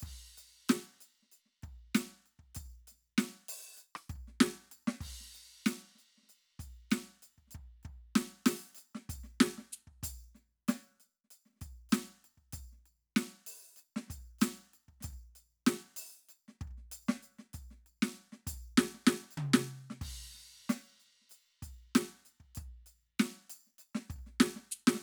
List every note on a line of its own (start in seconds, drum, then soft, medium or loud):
0.01 kick soft
0.01 percussion medium
0.05 crash medium
0.09 kick soft
0.38 percussion soft
0.70 snare loud
0.70 percussion medium
1.01 percussion soft
1.23 snare soft
1.33 percussion soft
1.46 snare soft
1.63 kick soft
1.63 percussion soft
1.95 snare loud
1.95 percussion soft
1.95 percussion medium
2.27 percussion soft
2.40 kick soft
2.56 kick soft
2.56 percussion medium
2.67 kick soft
2.88 snare soft
2.88 percussion soft
3.19 snare loud
3.19 percussion medium
3.49 percussion loud
3.78 percussion soft
3.80 percussion soft
3.96 cross-stick medium
4.10 kick soft
4.10 percussion soft
4.16 kick soft
4.28 snare soft
4.41 snare loud
4.55 snare soft
4.72 percussion medium
4.88 snare medium
5.01 kick soft
5.01 crash medium
5.07 kick soft
5.11 kick soft
5.21 snare soft
5.26 snare soft
5.29 snare soft
5.35 snare soft
5.35 percussion soft
5.67 snare medium
5.67 percussion medium
5.96 snare soft
5.96 percussion soft
6.18 snare soft
6.24 snare soft
6.27 snare soft
6.27 percussion soft
6.60 kick soft
6.60 percussion soft
6.68 kick soft
6.92 snare medium
6.92 percussion medium
7.23 percussion soft
7.39 kick soft
7.48 snare soft
7.52 kick soft
7.52 snare soft
7.52 percussion medium
7.52 percussion soft
7.84 kick soft
7.84 percussion soft
8.16 snare loud
8.16 percussion medium
8.47 snare loud
8.47 percussion loud
8.76 percussion medium
8.79 percussion soft
8.96 snare soft
9.10 kick soft
9.10 percussion medium
9.16 kick soft
9.19 kick soft
9.24 snare soft
9.41 snare loud
9.59 snare soft
9.73 floor tom medium
9.88 kick soft
10.04 kick soft
10.04 percussion loud
10.36 snare soft
10.36 percussion soft
10.69 snare loud
10.69 percussion medium
11.01 percussion soft
11.25 snare soft
11.32 percussion soft
11.46 snare soft
11.51 snare soft
11.54 snare soft
11.57 snare soft
11.62 kick soft
11.62 percussion soft
11.90 percussion soft
11.93 snare loud
11.93 percussion medium
12.25 percussion soft
12.38 kick soft
12.54 kick soft
12.54 percussion medium
12.60 kick soft
12.73 snare soft
12.78 snare soft
12.87 percussion soft
13.17 snare loud
13.17 percussion soft
13.47 percussion medium
13.77 percussion soft
13.80 percussion soft
13.97 snare medium
14.08 kick soft
14.08 snare soft
14.08 percussion medium
14.19 kick soft
14.40 percussion soft
14.42 snare loud
14.42 percussion loud
14.74 percussion soft
14.89 kick soft
15.01 kick soft
15.01 snare soft
15.01 percussion medium
15.06 snare soft
15.11 kick soft
15.14 kick soft
15.36 percussion soft
15.67 snare loud
15.67 percussion medium
15.97 percussion medium
16.30 percussion soft
16.31 percussion soft
16.49 snare soft
16.62 kick medium
16.62 percussion soft
16.68 kick soft
16.71 kick soft
16.78 snare soft
16.92 percussion medium
17.10 snare loud
17.24 percussion soft
17.40 snare soft
17.54 kick soft
17.54 percussion soft
17.63 kick soft
17.71 snare soft
17.87 percussion soft
18.03 snare medium
18.33 snare soft
18.48 kick medium
18.48 percussion medium
18.54 kick soft
18.57 kick soft
18.78 snare loud
18.95 snare soft
19.08 snare loud
19.23 snare soft
19.32 percussion soft
19.38 mid tom loud
19.54 snare loud
19.91 snare soft
20.02 kick medium
20.02 snare soft
20.02 crash medium
20.09 kick soft
20.12 kick soft
20.35 snare soft
20.41 percussion soft
20.70 snare medium
20.70 percussion medium
21.01 percussion soft
21.22 snare soft
21.30 percussion soft
21.32 percussion soft
21.63 kick soft
21.63 percussion soft
21.69 kick soft
21.96 snare loud
21.96 percussion medium
21.96 percussion soft
22.26 percussion soft
22.41 kick soft
22.56 kick soft
22.56 percussion medium
22.56 percussion soft
22.87 percussion soft
23.20 snare loud
23.20 percussion soft
23.51 percussion medium
23.67 snare soft
23.79 percussion soft
23.82 percussion soft
23.96 snare medium
24.11 kick soft
24.11 percussion soft
24.17 kick soft
24.19 kick soft
24.27 snare soft
24.41 snare loud
24.57 snare soft
24.72 floor tom loud
24.88 snare loud
24.96 snare soft